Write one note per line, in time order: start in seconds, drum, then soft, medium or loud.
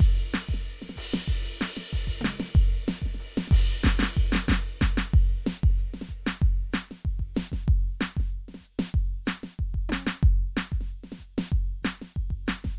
0.01 kick loud
0.01 crash loud
0.34 snare loud
0.34 hi-hat pedal medium
0.34 ride medium
0.49 kick medium
0.54 snare soft
0.65 hi-hat pedal medium
0.65 ride soft
0.82 snare medium
0.90 snare medium
0.96 kick soft
0.96 hi-hat pedal medium
0.96 ride loud
1.14 snare loud
1.28 kick medium
1.28 ride medium
1.44 ride medium
1.60 snare loud
1.60 hi-hat pedal medium
1.60 ride loud
1.77 snare medium
1.93 kick medium
1.93 ride medium
2.08 kick medium
2.22 snare loud
2.22 hi-hat pedal medium
2.22 mid tom loud
2.40 snare loud
2.55 kick loud
2.55 crash loud
2.88 snare loud
2.88 hi-hat pedal medium
2.88 ride soft
3.02 kick medium
3.02 snare soft
3.15 snare soft
3.19 hi-hat pedal medium
3.19 ride medium
3.38 snare loud
3.48 kick loud
3.48 snare soft
3.52 ride loud
3.84 kick loud
3.84 snare loud
3.84 hi-hat pedal soft
3.87 snare loud
4.00 snare loud
4.03 snare loud
4.17 kick loud
4.17 hi-hat pedal medium
4.33 snare loud
4.35 snare loud
4.49 kick medium
4.49 snare loud
4.52 snare loud
4.82 kick medium
4.82 snare loud
4.98 snare loud
5.14 kick loud
5.14 crash loud
5.47 snare loud
5.47 hi-hat pedal medium
5.64 kick loud
5.70 snare soft
5.76 hi-hat pedal medium
5.76 crash loud
5.94 snare medium
6.02 snare medium
6.08 kick soft
6.08 hi-hat pedal soft
6.08 crash loud
6.27 snare loud
6.42 kick loud
6.42 crash medium
6.58 crash soft
6.71 kick soft
6.71 snare loud
6.71 hi-hat pedal medium
6.71 crash loud
6.91 snare medium
7.05 kick medium
7.05 crash medium
7.20 kick medium
7.20 crash soft
7.35 snare loud
7.35 hi-hat pedal medium
7.35 crash loud
7.52 kick medium
7.52 snare medium
7.68 kick loud
7.68 crash loud
8.00 snare loud
8.00 hi-hat pedal medium
8.00 crash medium
8.17 kick medium
8.17 snare soft
8.30 hi-hat pedal soft
8.30 crash soft
8.49 snare soft
8.55 snare soft
8.60 kick soft
8.60 hi-hat pedal medium
8.60 crash loud
8.80 snare loud
8.95 kick medium
8.95 crash medium
9.09 crash soft
9.24 kick soft
9.24 snare loud
9.24 hi-hat pedal medium
9.24 crash loud
9.44 snare medium
9.59 kick medium
9.59 crash medium
9.75 kick medium
9.90 snare loud
9.90 hi-hat pedal medium
9.90 high tom loud
10.07 snare loud
10.23 kick loud
10.23 crash loud
10.54 kick soft
10.54 snare loud
10.54 hi-hat pedal medium
10.54 crash loud
10.72 kick medium
10.81 snare soft
11.04 snare soft
11.12 snare medium
11.19 kick soft
11.19 hi-hat pedal medium
11.19 crash medium
11.38 snare loud
11.52 kick medium
11.52 crash medium
11.68 crash medium
11.83 kick soft
11.83 snare loud
11.83 hi-hat pedal medium
11.83 crash loud
12.02 snare medium
12.16 kick medium
12.16 crash medium
12.31 kick medium
12.31 crash soft
12.47 snare loud
12.47 hi-hat pedal medium
12.47 crash loud
12.65 kick medium
12.65 snare medium